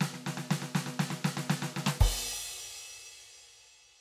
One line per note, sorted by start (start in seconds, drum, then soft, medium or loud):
0.01 snare loud
0.14 snare medium
0.27 snare loud
0.38 snare medium
0.51 snare loud
0.62 snare medium
0.75 snare loud
0.86 snare medium
1.00 snare loud
1.11 snare loud
1.25 snare loud
1.37 snare loud
1.50 snare loud
1.62 snare loud
1.77 snare loud
1.87 snare loud
2.01 kick loud
2.01 crash loud